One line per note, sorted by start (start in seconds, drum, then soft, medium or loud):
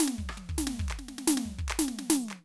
0.00 snare loud
0.07 snare medium
0.18 kick soft
0.29 cross-stick medium
0.37 high tom medium
0.49 kick soft
0.58 snare medium
0.67 snare medium
0.79 kick medium
0.88 percussion medium
0.99 snare soft
1.08 snare soft
1.18 snare medium
1.27 snare loud
1.37 snare medium
1.45 kick soft
1.59 kick soft
1.68 percussion loud
1.79 snare loud
1.88 snare medium
1.99 snare medium
2.10 snare loud
2.21 closed hi-hat medium
2.28 percussion medium